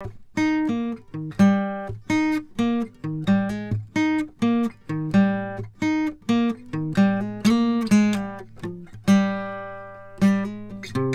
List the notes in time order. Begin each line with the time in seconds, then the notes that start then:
0.38 D#4
0.70 A#3
1.15 D#3
1.40 G3
2.11 D#4
2.60 A#3
3.05 D#3
3.29 G3
3.51 G#3
3.97 D#4
4.43 A#3
4.90 D#3
5.15 G3
5.83 D#4
6.30 A#3
6.74 D#3
6.98 G3
7.21 G#3
7.46 A#3
7.92 G#3
8.15 G3
8.64 F3
9.09 G3
10.22 G3
10.46 G#3
10.71 G3
10.96 C3